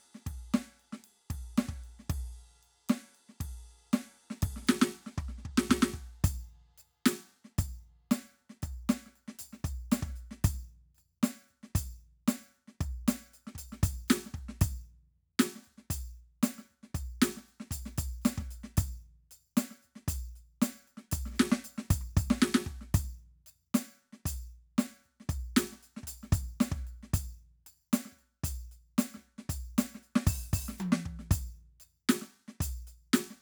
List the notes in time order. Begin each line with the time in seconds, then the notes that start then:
0.01 ride
0.15 snare
0.26 kick, ride
0.54 snare, ride
0.80 ride
0.93 snare
1.04 ride
1.30 kick, ride
1.58 snare, ride
1.69 kick, snare
1.84 ride
1.99 snare
2.10 kick, ride
2.38 ride
2.63 ride
2.89 snare, ride
3.15 ride
3.29 snare
3.40 kick, ride
3.93 snare, ride
4.30 snare
4.42 kick, ride
4.56 snare
4.62 snare
4.66 snare, percussion
4.69 snare
4.82 snare
5.06 snare
5.18 kick, cross-stick
5.28 snare
5.38 snare
5.45 kick
5.58 snare
5.70 kick, snare
5.82 snare
5.94 kick
6.24 kick, percussion
6.78 percussion
7.06 snare, percussion
7.45 snare
7.58 kick, percussion
8.11 snare, percussion
8.38 percussion
8.50 snare
8.62 kick, percussion
8.89 snare, percussion
9.06 snare
9.16 percussion
9.28 snare
9.39 kick, percussion
9.53 snare
9.64 kick, percussion
9.92 snare, percussion
10.03 kick
10.08 snare
10.16 percussion
10.31 snare
10.44 kick, percussion
10.95 percussion
10.98 percussion
11.23 snare, percussion
11.49 kick, percussion
11.63 snare
11.75 kick, percussion
12.28 snare, percussion
12.55 percussion
12.68 snare
12.81 kick, percussion
13.08 snare, percussion
13.34 percussion
13.47 snare
13.55 kick, percussion
13.72 snare
13.83 kick, percussion
14.08 snare, percussion
14.10 percussion
14.26 snare
14.34 kick, percussion
14.49 snare
14.61 kick, percussion
14.86 percussion
15.39 snare, percussion
15.56 snare
15.58 snare
15.64 kick, percussion
15.78 snare
15.90 kick, percussion
16.17 percussion
16.43 snare, percussion
16.58 snare
16.70 kick, percussion
16.83 snare
16.95 kick, percussion
17.22 snare, percussion
17.37 snare
17.48 percussion
17.60 snare
17.70 kick, snare, percussion
17.86 snare
17.98 kick, percussion
18.22 snare, percussion
18.25 percussion
18.38 kick, snare
18.51 percussion
18.64 snare
18.77 kick, percussion
19.31 percussion
19.57 snare, percussion
19.71 snare
19.82 kick, percussion
19.96 snare
20.08 kick, percussion
20.36 percussion
20.62 snare, percussion
20.88 percussion
20.97 snare
21.12 kick, percussion
21.26 snare
21.30 snare
21.33 snare, percussion
21.40 snare
21.52 snare
21.64 percussion
21.78 snare
21.90 kick, percussion
22.01 cross-stick
22.17 kick, percussion
22.30 snare
22.38 snare, percussion
22.54 snare
22.66 kick, snare
22.81 snare
22.94 kick, percussion
23.46 percussion
23.74 snare, percussion
24.13 snare
24.26 kick, percussion
24.53 percussion
24.78 snare, percussion
25.04 kick, percussion
25.20 snare
25.29 kick, percussion
25.57 snare, percussion
25.72 snare
25.83 percussion
25.97 snare
26.03 kick
26.07 percussion
26.23 snare
26.32 kick, percussion
26.60 snare, percussion
26.72 kick, snare
26.87 percussion
27.03 snare
27.14 kick, percussion
27.66 percussion
27.93 snare, percussion
28.05 snare
28.10 kick, snare
28.19 percussion
28.44 kick, percussion
28.71 percussion
28.98 snare, percussion
29.14 kick, snare
29.17 snare
29.38 snare
29.49 kick, percussion
29.78 snare, percussion
29.95 snare
30.03 percussion
30.16 snare
30.27 kick, percussion
30.53 kick, percussion
30.68 snare
30.72 snare
30.77 snare, high tom, percussion
30.92 snare
31.06 kick
31.19 snare
31.31 kick, percussion
31.80 percussion
32.09 snare, percussion
32.22 snare
32.25 snare
32.48 snare
32.61 kick, percussion
32.87 percussion
33.13 snare, percussion
33.30 snare